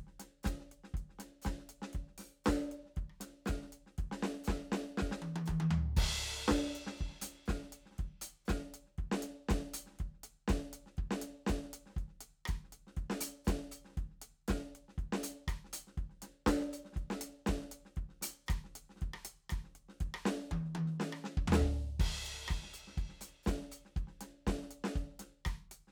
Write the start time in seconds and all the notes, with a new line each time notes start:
0.07 snare
0.20 snare, open hi-hat
0.44 kick, snare, closed hi-hat, hi-hat pedal
0.60 snare
0.72 closed hi-hat
0.84 snare
0.94 kick, closed hi-hat
1.10 snare
1.19 snare, closed hi-hat
1.42 snare, hi-hat pedal
1.46 kick, closed hi-hat
1.59 snare
1.69 closed hi-hat
1.82 snare
1.94 kick, closed hi-hat
2.08 snare
2.18 snare, open hi-hat
2.45 kick, snare, closed hi-hat, hi-hat pedal
2.62 snare
2.72 closed hi-hat
2.86 snare
2.97 kick, closed hi-hat
3.10 cross-stick
3.21 snare, open hi-hat
3.46 kick, snare, closed hi-hat, hi-hat pedal
3.63 snare
3.73 closed hi-hat
3.87 snare
3.98 kick, closed hi-hat
4.12 snare
4.23 snare
4.36 snare
4.44 snare, hi-hat pedal
4.49 kick
4.59 snare
4.72 snare
4.87 snare
4.98 snare
5.03 kick
5.12 snare
5.22 high tom
5.36 open hi-hat, high tom
5.46 kick, hi-hat pedal, high tom
5.61 closed hi-hat, high tom
5.71 floor tom
5.97 kick, crash, ride
6.48 kick, snare
6.66 snare
6.76 closed hi-hat
6.87 snare
6.98 kick, closed hi-hat
7.10 snare
7.22 open hi-hat, snare
7.46 kick, snare, closed hi-hat, hi-hat pedal
7.63 snare
7.73 closed hi-hat
7.86 snare
7.91 snare
7.95 snare, closed hi-hat
7.99 kick
8.22 open hi-hat
8.46 snare, closed hi-hat, hi-hat pedal
8.50 kick
8.74 closed hi-hat
8.87 snare
8.98 kick, closed hi-hat
9.12 snare
9.23 closed hi-hat
9.49 kick, snare, closed hi-hat
9.67 snare
9.74 closed hi-hat
9.87 snare
9.90 snare
9.94 snare
9.99 kick, closed hi-hat
10.14 snare
10.24 closed hi-hat
10.48 kick, snare, closed hi-hat
10.73 closed hi-hat
10.86 snare
10.97 kick, closed hi-hat
11.11 snare
11.22 closed hi-hat
11.47 kick, snare, closed hi-hat
11.64 snare
11.74 closed hi-hat
11.86 snare
11.89 snare
11.97 kick, closed hi-hat
12.08 snare
12.21 closed hi-hat
12.46 kick, cross-stick, closed hi-hat
12.64 snare
12.73 closed hi-hat
12.87 snare
12.97 kick, closed hi-hat
13.10 snare
13.21 open hi-hat
13.45 kick, snare, closed hi-hat, hi-hat pedal
13.62 snare
13.72 closed hi-hat
13.85 snare
13.88 snare
13.92 snare
13.98 kick, closed hi-hat
14.11 snare
14.22 closed hi-hat
14.48 kick, snare, closed hi-hat
14.76 closed hi-hat
14.89 snare
14.98 kick, closed hi-hat
15.13 snare
15.24 closed hi-hat
15.48 kick, cross-stick, closed hi-hat
15.65 snare
15.73 closed hi-hat
15.88 snare
15.98 kick, closed hi-hat
16.10 snare
16.22 snare, closed hi-hat
16.47 kick, snare, closed hi-hat
16.61 snare
16.73 closed hi-hat
16.85 snare
16.93 kick, snare
16.97 closed hi-hat
17.11 snare
17.22 closed hi-hat
17.47 kick, snare, closed hi-hat
17.61 snare
17.72 closed hi-hat
17.86 snare
17.97 kick, closed hi-hat
18.09 snare
18.22 closed hi-hat, snare
18.47 kick, cross-stick, closed hi-hat, hi-hat pedal
18.64 snare
18.76 closed hi-hat
18.90 snare
18.96 snare
19.01 kick, closed hi-hat
19.14 cross-stick
19.25 closed hi-hat
19.50 kick, cross-stick, closed hi-hat
19.65 snare
19.76 closed hi-hat
19.89 snare
20.01 kick, closed hi-hat
20.14 cross-stick
20.26 snare
20.40 snare
20.52 kick, high tom
20.65 snare
20.75 high tom
20.87 snare
21.00 snare
21.13 cross-stick
21.24 snare
21.38 kick
21.48 floor tom
21.53 snare
21.62 kick
22.00 kick, crash, ride
22.25 closed hi-hat
22.48 closed hi-hat, kick, cross-stick
22.63 snare
22.74 closed hi-hat
22.88 snare
22.98 kick, closed hi-hat
23.09 snare
23.21 open hi-hat, snare
23.44 snare, hi-hat pedal
23.48 kick, closed hi-hat
23.62 snare
23.72 closed hi-hat
23.86 snare
23.97 kick, closed hi-hat
24.08 snare
24.21 snare, closed hi-hat
24.47 kick, snare, closed hi-hat
24.62 snare
24.71 closed hi-hat
24.84 snare
24.96 kick, closed hi-hat
25.10 snare
25.20 snare, closed hi-hat
25.46 kick, cross-stick, closed hi-hat
25.72 open hi-hat
25.88 snare